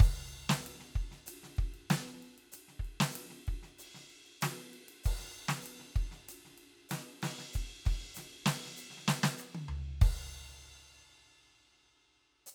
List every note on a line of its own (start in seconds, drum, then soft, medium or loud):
0.01 kick loud
0.01 hi-hat pedal medium
0.01 crash medium
0.19 snare soft
0.30 ride soft
0.50 snare loud
0.62 hi-hat pedal medium
0.67 ride medium
0.81 snare soft
0.96 kick medium
0.96 ride soft
1.12 snare soft
1.27 hi-hat pedal medium
1.27 ride medium
1.44 snare soft
1.58 kick medium
1.58 ride soft
1.75 ride soft
1.91 snare loud
1.91 hi-hat pedal medium
1.91 ride medium
2.07 snare soft
2.23 ride soft
2.39 ride soft
2.53 hi-hat pedal medium
2.53 ride medium
2.69 snare soft
2.80 kick soft
2.86 ride soft
3.01 snare loud
3.12 hi-hat pedal medium
3.16 ride medium
3.30 snare soft
3.48 kick soft
3.48 ride soft
3.64 snare soft
3.79 hi-hat pedal medium
3.79 ride medium
3.95 snare soft
4.11 ride soft
4.27 ride soft
4.42 snare loud
4.42 hi-hat pedal medium
4.42 ride loud
4.58 snare soft
4.74 ride soft
4.89 ride soft
5.04 kick medium
5.04 hi-hat pedal medium
5.04 crash medium
5.19 snare soft
5.22 snare soft
5.35 ride soft
5.49 snare loud
5.62 hi-hat pedal medium
5.67 ride medium
5.80 snare soft
5.96 kick medium
5.96 ride soft
6.12 snare soft
6.29 hi-hat pedal medium
6.29 ride medium
6.46 snare soft
6.59 ride soft
6.90 snare medium
6.90 hi-hat pedal medium
6.90 ride medium
7.23 snare loud
7.23 ride medium
7.39 snare soft
7.54 kick soft
7.54 hi-hat pedal medium
7.54 ride soft
7.86 kick medium
7.86 snare soft
7.86 ride medium
8.15 snare soft
8.15 hi-hat pedal medium
8.15 ride medium
8.47 snare loud
8.47 ride medium
8.66 snare soft
8.77 hi-hat pedal medium
8.77 ride soft
8.91 snare soft
8.98 snare soft
9.04 snare soft
9.09 snare loud
9.24 snare loud
9.39 cross-stick soft
9.39 hi-hat pedal medium
9.55 high tom medium
9.69 floor tom medium
10.02 kick loud
10.02 crash medium
12.47 hi-hat pedal medium